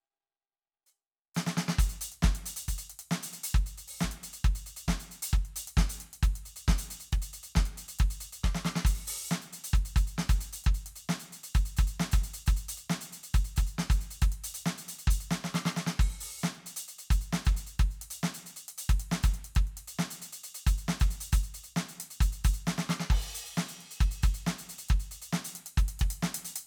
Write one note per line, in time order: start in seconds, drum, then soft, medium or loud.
0.86 hi-hat pedal soft
1.35 snare loud
1.35 hi-hat pedal medium
1.57 snare loud
1.68 snare loud
1.79 closed hi-hat loud
1.79 kick loud
1.89 closed hi-hat medium
2.01 closed hi-hat loud
2.12 closed hi-hat medium
2.22 kick loud
2.22 snare loud
2.35 closed hi-hat medium
2.46 closed hi-hat loud
2.56 closed hi-hat loud
2.68 closed hi-hat medium
2.68 kick medium
2.78 closed hi-hat medium
2.90 closed hi-hat medium
2.99 closed hi-hat medium
3.11 snare loud
3.23 closed hi-hat loud
3.33 closed hi-hat medium
3.44 closed hi-hat loud
3.54 kick loud
3.54 closed hi-hat soft
3.66 closed hi-hat medium
3.78 open hi-hat medium
4.00 snare loud
4.00 hi-hat pedal soft
4.04 kick medium
4.11 closed hi-hat medium
4.23 closed hi-hat medium
4.33 closed hi-hat medium
4.44 kick loud
4.44 closed hi-hat medium
4.55 closed hi-hat medium
4.66 closed hi-hat medium
4.76 closed hi-hat medium
4.88 kick medium
4.88 snare loud
5.00 closed hi-hat medium
5.11 closed hi-hat medium
5.22 closed hi-hat loud
5.33 kick loud
5.33 closed hi-hat soft
5.45 closed hi-hat soft
5.56 closed hi-hat loud
5.67 closed hi-hat medium
5.77 kick loud
5.77 snare loud
5.89 closed hi-hat medium
6.00 closed hi-hat medium
6.13 closed hi-hat medium
6.23 kick loud
6.23 closed hi-hat medium
6.35 closed hi-hat medium
6.45 closed hi-hat medium
6.56 closed hi-hat medium
6.68 kick loud
6.68 snare loud
6.78 closed hi-hat medium
6.90 closed hi-hat medium
7.00 closed hi-hat medium
7.12 kick loud
7.12 closed hi-hat medium
7.22 closed hi-hat medium
7.33 closed hi-hat medium
7.43 closed hi-hat medium
7.55 kick loud
7.55 snare loud
7.65 closed hi-hat medium
7.77 closed hi-hat medium
7.88 closed hi-hat medium
7.99 kick loud
7.99 closed hi-hat medium
8.10 closed hi-hat medium
8.32 closed hi-hat medium
8.44 kick loud
8.44 snare medium
8.55 snare loud
8.76 snare loud
8.85 closed hi-hat medium
8.85 kick loud
8.95 open hi-hat medium
9.07 open hi-hat loud
9.29 snare loud
9.29 hi-hat pedal soft
9.42 closed hi-hat medium
9.53 closed hi-hat medium
9.64 closed hi-hat loud
9.73 kick loud
9.73 closed hi-hat medium
9.85 closed hi-hat medium
9.96 closed hi-hat medium
9.96 kick loud
10.07 closed hi-hat medium
10.18 snare loud
10.29 closed hi-hat medium
10.29 kick loud
10.41 closed hi-hat medium
10.53 closed hi-hat medium
10.64 kick loud
10.64 closed hi-hat medium
10.74 closed hi-hat medium
10.86 closed hi-hat medium
10.96 closed hi-hat medium
11.09 snare loud
11.20 closed hi-hat medium
11.32 closed hi-hat medium
11.43 closed hi-hat medium
11.54 closed hi-hat medium
11.54 kick loud
11.65 closed hi-hat medium
11.77 closed hi-hat medium
11.77 kick loud
11.87 closed hi-hat medium
12.00 snare loud
12.12 closed hi-hat medium
12.12 kick loud
12.23 closed hi-hat medium
12.34 closed hi-hat medium
12.46 closed hi-hat medium
12.46 kick loud
12.56 closed hi-hat medium
12.68 closed hi-hat loud
12.77 closed hi-hat medium
12.90 snare loud
13.01 closed hi-hat medium
13.13 closed hi-hat medium
13.23 closed hi-hat medium
13.34 closed hi-hat medium
13.34 kick loud
13.45 closed hi-hat medium
13.56 closed hi-hat medium
13.56 kick loud
13.67 closed hi-hat soft
13.78 snare loud
13.90 closed hi-hat medium
13.90 kick loud
14.11 closed hi-hat medium
14.22 kick loud
14.22 closed hi-hat medium
14.32 closed hi-hat medium
14.44 closed hi-hat loud
14.54 closed hi-hat medium
14.66 snare loud
14.78 closed hi-hat medium
14.88 closed hi-hat medium
14.99 closed hi-hat medium
15.07 closed hi-hat loud
15.07 kick loud
15.20 closed hi-hat medium
15.31 snare loud
15.44 snare loud
15.54 snare loud
15.65 snare loud
15.76 snare loud
15.87 snare loud
15.99 open hi-hat medium
15.99 kick loud
16.08 open hi-hat medium
16.20 open hi-hat loud
16.31 open hi-hat soft
16.42 snare loud
16.42 hi-hat pedal soft
16.55 closed hi-hat soft
16.66 closed hi-hat medium
16.76 closed hi-hat loud
16.88 closed hi-hat medium
16.99 closed hi-hat medium
17.10 closed hi-hat medium
17.10 kick loud
17.21 closed hi-hat medium
17.33 snare loud
17.45 closed hi-hat medium
17.45 kick loud
17.57 closed hi-hat medium
17.79 kick loud
17.79 closed hi-hat medium
17.91 closed hi-hat soft
18.01 closed hi-hat medium
18.10 closed hi-hat medium
18.23 snare loud
18.34 closed hi-hat medium
18.46 closed hi-hat medium
18.56 closed hi-hat medium
18.68 closed hi-hat medium
18.78 closed hi-hat loud
18.89 kick loud
18.89 closed hi-hat medium
19.00 closed hi-hat medium
19.11 snare loud
19.23 closed hi-hat medium
19.23 kick loud
19.34 closed hi-hat medium
19.44 closed hi-hat medium
19.55 kick loud
19.55 closed hi-hat medium
19.67 closed hi-hat soft
19.77 closed hi-hat medium
19.88 closed hi-hat medium
19.99 snare loud
20.10 closed hi-hat medium
20.22 closed hi-hat medium
20.33 closed hi-hat medium
20.44 closed hi-hat medium
20.54 closed hi-hat medium
20.67 closed hi-hat medium
20.67 kick loud
20.78 closed hi-hat medium
20.88 snare loud
21.00 closed hi-hat medium
21.00 kick loud
21.10 closed hi-hat medium
21.32 closed hi-hat medium
21.32 kick loud
21.43 closed hi-hat medium
21.54 closed hi-hat medium
21.64 closed hi-hat medium
21.76 snare loud
21.89 closed hi-hat medium
22.00 closed hi-hat loud
22.10 closed hi-hat medium
22.21 closed hi-hat medium
22.21 kick loud
22.32 closed hi-hat medium
22.44 closed hi-hat medium
22.44 kick loud
22.54 closed hi-hat medium
22.66 snare loud
22.66 hi-hat pedal soft
22.78 snare loud
22.89 snare loud
23.00 snare loud
23.10 kick loud
23.10 crash loud
23.21 closed hi-hat medium
23.35 closed hi-hat medium
23.46 closed hi-hat medium
23.57 snare loud
23.69 closed hi-hat medium
23.81 closed hi-hat soft
23.91 closed hi-hat medium
24.01 kick loud
24.01 closed hi-hat medium
24.11 closed hi-hat medium
24.23 closed hi-hat medium
24.23 kick loud
24.34 closed hi-hat medium
24.47 snare loud
24.59 closed hi-hat medium
24.69 closed hi-hat medium
24.78 closed hi-hat medium
24.89 kick loud
24.89 closed hi-hat medium
25.00 closed hi-hat medium
25.11 closed hi-hat medium
25.22 closed hi-hat medium
25.33 snare loud
25.45 closed hi-hat loud
25.55 closed hi-hat medium
25.66 closed hi-hat medium
25.77 kick loud
25.77 closed hi-hat medium
25.99 kick loud
25.99 closed hi-hat medium
26.10 closed hi-hat loud
26.23 snare loud
26.34 closed hi-hat loud
26.45 closed hi-hat loud
26.56 closed hi-hat loud